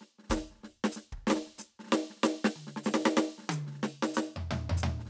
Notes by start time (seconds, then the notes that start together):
0.01 snare
0.19 snare
0.23 snare
0.27 snare
0.30 kick, snare, hi-hat pedal
0.36 snare
0.51 snare
0.54 snare
0.57 snare
0.60 snare
0.63 snare
0.84 snare
0.92 hi-hat pedal
0.96 snare
1.12 kick
1.27 snare
1.30 snare
1.36 snare
1.47 snare
1.58 snare, hi-hat pedal
1.68 snare
1.79 snare
1.83 snare
1.87 snare
1.92 snare
2.10 snare
2.16 snare
2.19 snare
2.21 snare
2.23 snare, hi-hat pedal
2.44 snare
2.56 high tom
2.67 snare
2.76 snare
2.84 snare, hi-hat pedal
2.94 snare
3.06 snare
3.17 snare
3.38 snare
3.41 snare
3.43 snare
3.47 snare, hi-hat pedal, high tom
3.67 snare
3.71 snare
3.74 snare
3.78 snare
3.82 snare
4.03 snare
4.14 snare, hi-hat pedal
4.36 floor tom
4.51 floor tom
4.70 floor tom
4.77 hi-hat pedal
4.83 floor tom
4.96 kick, snare
5.06 snare